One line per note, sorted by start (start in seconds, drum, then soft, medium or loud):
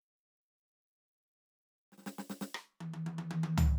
1.92 snare soft
1.98 snare soft
2.06 snare medium
2.18 snare medium
2.30 snare medium
2.41 snare medium
2.54 cross-stick medium
2.80 high tom medium
2.93 high tom medium
3.06 high tom medium
3.18 high tom medium
3.31 high tom medium
3.43 closed hi-hat soft
3.43 high tom medium
3.58 floor tom loud